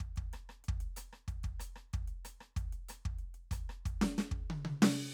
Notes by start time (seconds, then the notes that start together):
0.01 kick, closed hi-hat
0.17 kick, closed hi-hat
0.34 cross-stick, closed hi-hat
0.50 cross-stick
0.65 closed hi-hat
0.69 kick
0.81 closed hi-hat
0.97 closed hi-hat, cross-stick
1.14 cross-stick
1.29 kick, closed hi-hat
1.44 kick, closed hi-hat
1.61 closed hi-hat, cross-stick
1.77 cross-stick
1.94 kick, closed hi-hat
2.09 closed hi-hat
2.26 closed hi-hat, cross-stick
2.41 cross-stick
2.57 kick, closed hi-hat
2.73 closed hi-hat
2.89 closed hi-hat, cross-stick
3.06 kick
3.20 closed hi-hat
3.35 closed hi-hat
3.52 closed hi-hat, kick, cross-stick
3.70 cross-stick
3.86 kick, closed hi-hat
4.02 snare
4.19 snare
4.32 kick
4.51 high tom
4.66 high tom
4.83 snare, crash